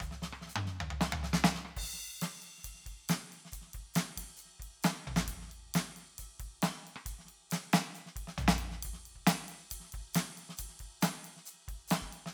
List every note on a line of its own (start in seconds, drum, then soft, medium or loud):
0.01 kick soft
0.01 hi-hat pedal soft
0.01 mid tom medium
0.09 kick soft
0.09 snare soft
0.23 snare medium
0.33 cross-stick medium
0.42 snare soft
0.47 snare soft
0.47 hi-hat pedal medium
0.56 high tom loud
0.67 snare soft
0.81 mid tom loud
0.91 mid tom medium
1.02 snare medium
1.13 mid tom loud
1.24 snare medium
1.45 snare loud
1.55 snare medium
1.66 cross-stick medium
1.77 kick soft
1.77 crash medium
1.83 kick soft
1.83 snare soft
1.88 kick soft
1.94 snare soft
1.99 cross-stick soft
2.22 snare loud
2.22 hi-hat pedal soft
2.22 ride medium
2.43 ride soft
2.59 snare soft
2.64 kick soft
2.64 hi-hat pedal medium
2.64 ride medium
2.75 snare soft
2.79 snare soft
2.83 snare soft
2.87 kick soft
2.87 ride soft
3.09 snare loud
3.09 hi-hat pedal soft
3.09 ride loud
3.33 ride soft
3.46 snare soft
3.52 kick soft
3.52 hi-hat pedal medium
3.52 ride medium
3.62 snare soft
3.68 snare soft
3.74 kick soft
3.74 ride medium
3.81 kick soft
3.94 snare loud
3.94 hi-hat pedal medium
3.94 ride loud
4.18 kick soft
4.18 ride loud
4.30 snare soft
4.37 hi-hat pedal medium
4.37 ride soft
4.46 snare soft
4.50 snare soft
4.53 snare soft
4.56 snare soft
4.60 kick soft
4.60 ride medium
4.83 snare loud
4.83 hi-hat pedal medium
4.83 ride medium
5.08 floor tom loud
5.17 snare loud
5.28 kick soft
5.28 hi-hat pedal medium
5.28 ride medium
5.34 kick soft
5.42 snare soft
5.48 snare soft
5.48 ride soft
5.75 snare loud
5.75 hi-hat pedal soft
5.75 ride loud
5.97 ride soft
6.12 snare soft
6.19 kick soft
6.19 snare soft
6.19 hi-hat pedal medium
6.19 ride medium
6.26 snare soft
6.30 snare soft
6.40 kick soft
6.40 ride medium
6.46 kick soft
6.63 snare loud
6.63 hi-hat pedal soft
6.63 ride medium
6.88 ride soft
6.97 cross-stick medium
7.06 kick soft
7.06 hi-hat pedal medium
7.06 ride medium
7.13 kick soft
7.19 snare soft
7.26 snare soft
7.26 ride soft
7.51 snare loud
7.51 hi-hat pedal medium
7.51 ride medium
7.74 snare loud
7.74 ride medium
7.95 hi-hat pedal soft
7.95 ride soft
8.07 snare soft
8.16 kick soft
8.16 ride medium
8.23 kick soft
8.28 snare medium
8.39 floor tom loud
8.39 hi-hat pedal soft
8.49 snare loud
8.59 ride medium
8.72 snare soft
8.83 kick soft
8.83 hi-hat pedal medium
8.83 ride loud
8.94 snare soft
9.06 ride soft
9.16 kick soft
9.27 snare loud
9.27 hi-hat pedal soft
9.27 ride loud
9.49 ride medium
9.59 snare soft
9.71 kick soft
9.71 hi-hat pedal medium
9.71 ride loud
9.81 snare soft
9.84 snare soft
9.93 kick soft
9.93 ride medium
10.01 kick soft
10.14 snare loud
10.14 hi-hat pedal medium
10.14 ride loud
10.38 ride soft
10.50 snare soft
10.58 kick soft
10.58 hi-hat pedal medium
10.58 ride loud
10.69 snare soft
10.75 snare soft
10.80 kick soft
10.80 ride soft
11.02 snare loud
11.02 hi-hat pedal medium
11.02 ride loud
11.25 ride medium
11.37 snare soft
11.46 hi-hat pedal medium
11.46 ride soft
11.54 snare soft
11.60 snare soft
11.64 snare soft
11.69 kick soft
11.69 ride medium
11.75 kick soft
11.88 snare loud
11.88 hi-hat pedal medium
11.88 ride loud
12.02 kick soft
12.13 ride soft
12.27 snare medium